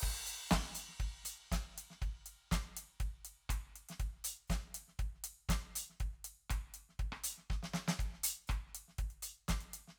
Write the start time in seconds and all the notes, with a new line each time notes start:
0.01 kick, hi-hat pedal, crash
0.26 open hi-hat, kick
0.48 kick, snare, closed hi-hat, hi-hat pedal
0.64 snare
0.75 closed hi-hat
0.88 snare
0.99 kick, closed hi-hat
1.23 closed hi-hat, snare
1.51 kick, snare, closed hi-hat
1.77 closed hi-hat
1.90 snare
2.01 kick, closed hi-hat
2.26 closed hi-hat
2.51 kick, snare, closed hi-hat
2.76 closed hi-hat
3.00 kick, closed hi-hat
3.25 closed hi-hat
3.49 kick, cross-stick, closed hi-hat
3.75 closed hi-hat
3.89 snare, closed hi-hat
3.99 kick, closed hi-hat
4.16 snare
4.24 open hi-hat
4.47 kick, snare, closed hi-hat, hi-hat pedal
4.74 closed hi-hat
4.88 snare
4.99 kick, closed hi-hat
5.14 snare
5.24 closed hi-hat
5.49 kick, snare, closed hi-hat
5.75 closed hi-hat
5.89 snare
5.93 snare
6.00 kick, closed hi-hat
6.11 snare
6.24 closed hi-hat
6.49 kick, cross-stick, closed hi-hat
6.74 closed hi-hat
6.89 snare
6.99 kick, closed hi-hat
7.12 cross-stick
7.17 cross-stick
7.23 closed hi-hat
7.37 snare
7.50 kick, snare
7.62 snare
7.73 snare
7.88 snare
7.99 kick, closed hi-hat
8.13 snare
8.23 open hi-hat
8.47 kick, cross-stick, closed hi-hat, hi-hat pedal
8.67 snare
8.74 closed hi-hat
8.88 snare
8.98 kick, closed hi-hat
9.10 closed hi-hat
9.22 open hi-hat
9.48 kick, snare, closed hi-hat
9.60 closed hi-hat
9.73 closed hi-hat
9.87 snare